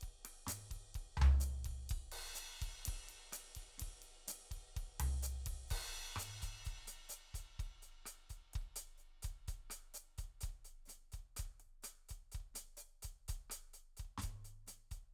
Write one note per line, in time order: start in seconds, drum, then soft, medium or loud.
0.01 kick soft
0.01 hi-hat pedal soft
0.01 ride soft
0.08 kick soft
0.25 cross-stick soft
0.25 snare soft
0.25 ride medium
0.47 cross-stick soft
0.47 snare soft
0.47 hi-hat pedal loud
0.47 mid tom soft
0.47 ride medium
0.71 kick soft
0.71 ride soft
0.76 kick soft
0.95 kick soft
0.95 ride soft
1.17 floor tom loud
1.22 floor tom loud
1.40 hi-hat pedal medium
1.40 ride soft
1.65 kick soft
1.65 ride soft
1.71 kick soft
1.90 kick soft
1.90 ride bell soft
1.97 kick soft
2.12 crash medium
2.35 hi-hat pedal medium
2.35 ride bell soft
2.62 kick soft
2.62 ride soft
2.67 kick soft
2.85 kick soft
2.85 snare soft
2.85 hi-hat pedal soft
2.85 ride medium
2.94 kick soft
3.09 ride soft
3.32 cross-stick soft
3.32 snare soft
3.32 hi-hat pedal medium
3.32 ride medium
3.55 kick soft
3.55 ride soft
3.78 kick soft
3.78 snare soft
3.78 ride medium
3.87 kick soft
4.02 ride soft
4.28 snare soft
4.28 hi-hat pedal medium
4.28 ride medium
4.51 kick soft
4.51 ride soft
4.57 kick soft
4.77 kick soft
4.77 ride soft
4.83 kick soft
5.00 floor tom medium
5.00 ride medium
5.23 hi-hat pedal medium
5.46 kick soft
5.46 ride medium
5.52 kick soft
5.68 kick soft
5.68 hi-hat pedal soft
5.68 crash medium
5.86 crash soft
6.16 open hi-hat medium
6.16 cross-stick medium
6.16 hi-hat pedal medium
6.16 mid tom medium
6.42 closed hi-hat soft
6.42 kick soft
6.49 kick soft
6.65 closed hi-hat soft
6.65 kick soft
6.72 kick soft
6.86 closed hi-hat medium
6.86 snare soft
7.09 closed hi-hat soft
7.09 hi-hat pedal medium
7.34 closed hi-hat soft
7.34 kick soft
7.40 kick soft
7.60 kick soft
7.60 closed hi-hat soft
7.65 kick soft
7.83 closed hi-hat soft
8.05 closed hi-hat medium
8.05 cross-stick soft
8.05 snare soft
8.30 closed hi-hat soft
8.30 kick soft
8.54 kick soft
8.54 closed hi-hat soft
8.61 kick soft
8.76 open hi-hat medium
8.98 closed hi-hat soft
8.98 hi-hat pedal soft
9.23 closed hi-hat medium
9.23 kick soft
9.30 kick soft
9.48 closed hi-hat soft
9.48 kick soft
9.54 kick soft
9.70 closed hi-hat medium
9.70 cross-stick soft
9.70 snare soft
9.94 hi-hat pedal medium
10.18 closed hi-hat soft
10.18 kick soft
10.24 kick soft
10.41 closed hi-hat medium
10.41 kick soft
10.49 kick soft
10.65 closed hi-hat soft
10.86 closed hi-hat soft
10.86 snare soft
10.86 hi-hat pedal soft
10.86 crash soft
11.12 closed hi-hat soft
11.12 kick soft
11.19 kick soft
11.37 closed hi-hat medium
11.37 kick soft
11.37 cross-stick soft
11.45 kick soft
11.60 closed hi-hat soft
11.83 closed hi-hat medium
11.83 cross-stick soft
11.83 snare soft
11.83 hi-hat pedal soft
12.09 closed hi-hat soft
12.09 kick soft
12.32 closed hi-hat soft
12.32 kick soft
12.40 kick soft
12.55 open hi-hat medium
12.55 snare soft
12.77 closed hi-hat soft
12.77 hi-hat pedal medium
13.03 closed hi-hat soft
13.03 kick soft
13.28 closed hi-hat soft
13.28 kick soft
13.35 kick soft
13.50 closed hi-hat medium
13.50 cross-stick soft
13.50 snare soft
13.74 closed hi-hat soft
13.97 closed hi-hat soft
13.97 kick soft
14.05 kick soft
14.18 closed hi-hat medium
14.18 snare soft
14.18 mid tom soft
14.24 kick soft
14.29 kick soft
14.45 closed hi-hat soft
14.67 closed hi-hat soft
14.67 snare soft
14.67 hi-hat pedal soft
14.91 closed hi-hat soft
14.91 kick soft
14.97 kick soft